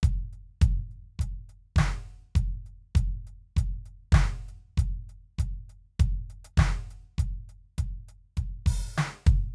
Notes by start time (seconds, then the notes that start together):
0.03 kick, closed hi-hat
0.33 closed hi-hat
0.61 kick, closed hi-hat
0.91 closed hi-hat
1.19 kick, closed hi-hat
1.49 closed hi-hat
1.76 kick, snare, closed hi-hat
2.08 closed hi-hat
2.35 kick, closed hi-hat
2.66 closed hi-hat
2.95 kick, closed hi-hat
3.27 closed hi-hat
3.56 kick, closed hi-hat
3.86 closed hi-hat
4.12 kick, snare, closed hi-hat
4.48 closed hi-hat
4.77 kick, closed hi-hat
5.09 closed hi-hat
5.38 kick, closed hi-hat
5.69 closed hi-hat
6.00 kick, closed hi-hat
6.30 closed hi-hat
6.45 closed hi-hat
6.57 kick, snare, closed hi-hat
6.91 closed hi-hat
7.18 kick, closed hi-hat
7.49 closed hi-hat
7.78 kick, closed hi-hat
8.09 closed hi-hat
8.37 kick, closed hi-hat
8.66 kick, open hi-hat
8.96 snare, closed hi-hat, hi-hat pedal
9.27 kick, open hi-hat